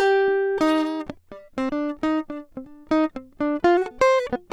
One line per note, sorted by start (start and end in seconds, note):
0.00 0.16 E4
0.00 1.06 G4
0.62 1.06 D#4
1.59 1.72 C4
1.74 1.98 D4
2.04 2.26 D#4
2.31 2.49 D4
2.58 2.67 C4
2.68 2.87 D4
2.92 3.11 D#4
3.17 3.32 C4
3.42 3.62 D4
3.65 3.76 F4
3.77 3.92 F#4
3.87 4.00 A4
4.02 4.12 C5
4.12 4.27 C5
4.27 4.40 B4